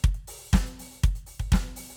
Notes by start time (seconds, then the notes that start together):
0.01 closed hi-hat, kick, hi-hat pedal
0.15 closed hi-hat
0.28 open hi-hat
0.39 open hi-hat
0.52 kick, snare, hi-hat pedal
0.67 closed hi-hat
0.80 open hi-hat
0.91 open hi-hat
1.00 hi-hat pedal
1.04 kick, closed hi-hat
1.16 closed hi-hat
1.27 open hi-hat
1.40 open hi-hat, kick
1.53 kick, snare, hi-hat pedal
1.64 closed hi-hat
1.77 open hi-hat
1.89 open hi-hat